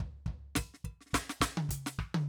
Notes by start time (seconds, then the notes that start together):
0.00 kick, floor tom
0.26 kick, floor tom
0.55 kick, snare, percussion
0.74 snare
0.84 kick, percussion
1.00 snare
1.06 snare
1.10 kick, snare
1.14 snare
1.29 snare
1.40 kick, snare
1.57 high tom
1.69 kick, closed hi-hat
1.86 snare
1.98 kick, cross-stick
2.14 high tom